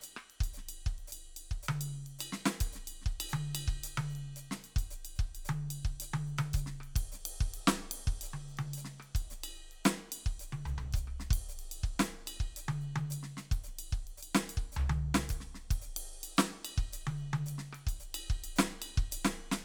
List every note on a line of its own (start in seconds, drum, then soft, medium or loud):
0.01 hi-hat pedal medium
0.01 ride bell medium
0.16 cross-stick medium
0.30 ride soft
0.40 kick medium
0.40 ride bell medium
0.53 snare soft
0.53 hi-hat pedal medium
0.69 ride bell medium
0.86 kick medium
0.98 ride soft
1.07 hi-hat pedal medium
1.12 ride bell medium
1.36 ride bell medium
1.51 kick medium
1.63 hi-hat pedal medium
1.68 high tom loud
1.81 ride bell medium
2.06 ride soft
2.19 hi-hat pedal medium
2.19 ride bell loud
2.32 snare medium
2.46 snare loud
2.60 kick medium
2.60 ride bell medium
2.72 snare soft
2.72 hi-hat pedal medium
2.87 ride bell medium
3.02 snare soft
3.06 kick medium
3.20 ride bell loud
3.29 hi-hat pedal medium
3.33 high tom loud
3.55 ride bell loud
3.67 kick medium
3.84 hi-hat pedal medium
3.84 ride bell medium
3.97 high tom loud
4.10 hi-hat pedal soft
4.15 ride soft
4.36 hi-hat pedal medium
4.36 ride soft
4.51 snare medium
4.60 hi-hat pedal soft
4.60 ride bell soft
4.76 kick medium
4.76 ride bell medium
4.90 hi-hat pedal medium
5.05 ride bell medium
5.15 kick medium
5.15 hi-hat pedal soft
5.35 ride bell soft
5.45 hi-hat pedal medium
5.49 high tom loud
5.70 ride bell medium
5.85 kick medium
6.00 hi-hat pedal medium
6.00 ride bell medium
6.13 high tom loud
6.26 hi-hat pedal soft
6.38 high tom loud
6.38 ride soft
6.53 kick medium
6.53 hi-hat pedal medium
6.53 ride bell medium
6.66 snare soft
6.80 cross-stick soft
6.80 ride soft
6.96 kick medium
6.96 ride loud
7.12 snare soft
7.12 hi-hat pedal medium
7.25 ride loud
7.36 kick medium
7.36 hi-hat pedal soft
7.54 ride medium
7.67 snare loud
7.67 hi-hat pedal medium
7.91 hi-hat pedal soft
7.91 ride loud
8.07 kick medium
8.21 hi-hat pedal medium
8.21 ride bell medium
8.33 high tom medium
8.48 hi-hat pedal soft
8.57 high tom loud
8.57 ride soft
8.73 hi-hat pedal medium
8.73 ride bell medium
8.85 snare soft
9.00 cross-stick medium
9.00 ride soft
9.15 kick medium
9.15 ride bell medium
9.30 snare soft
9.30 hi-hat pedal medium
9.44 ride bell loud
9.53 hi-hat pedal soft
9.71 ride soft
9.85 snare loud
9.85 hi-hat pedal medium
10.12 ride bell medium
10.26 kick medium
10.39 hi-hat pedal medium
10.39 ride bell soft
10.52 high tom loud
10.65 floor tom loud
10.65 hi-hat pedal soft
10.78 floor tom loud
10.93 kick medium
10.93 hi-hat pedal medium
10.93 ride soft
11.07 cross-stick soft
11.20 snare soft
11.20 hi-hat pedal soft
11.30 kick medium
11.30 ride loud
11.49 hi-hat pedal medium
11.59 ride medium
11.71 ride bell medium
11.83 kick medium
11.99 snare loud
11.99 hi-hat pedal medium
12.26 hi-hat pedal soft
12.26 ride bell loud
12.40 kick medium
12.56 hi-hat pedal medium
12.56 ride bell medium
12.68 high tom loud
12.80 hi-hat pedal soft
12.96 high tom loud
13.10 hi-hat pedal medium
13.10 ride bell medium
13.23 snare soft
13.37 snare medium
13.37 ride soft
13.51 kick medium
13.51 ride medium
13.64 hi-hat pedal medium
13.68 snare soft
13.79 ride bell medium
13.88 hi-hat pedal soft
13.92 kick medium
14.07 ride soft
14.17 hi-hat pedal medium
14.23 ride bell medium
14.35 snare loud
14.49 ride bell medium
14.57 kick medium
14.72 hi-hat pedal medium
14.76 floor tom loud
14.89 high tom loud
15.14 snare loud
15.29 kick medium
15.29 hi-hat pedal medium
15.29 ride medium
15.40 snare soft
15.54 snare soft
15.70 kick medium
15.70 ride medium
15.81 snare soft
15.81 hi-hat pedal medium
15.96 ride loud
16.23 ride bell medium
16.37 snare loud
16.37 hi-hat pedal medium
16.65 ride bell loud
16.77 kick medium
16.92 hi-hat pedal medium
16.92 ride bell medium
17.07 high tom loud
17.17 hi-hat pedal soft
17.33 high tom loud
17.46 hi-hat pedal medium
17.46 ride medium
17.58 snare soft
17.73 cross-stick medium
17.73 ride soft
17.87 kick medium
17.87 ride bell medium
18.00 hi-hat pedal medium
18.14 ride bell loud
18.30 kick medium
18.44 ride bell medium
18.56 snare loud
18.56 hi-hat pedal medium
18.82 ride bell loud
18.97 kick medium
19.11 hi-hat pedal medium
19.11 ride bell loud
19.25 snare loud
19.51 snare loud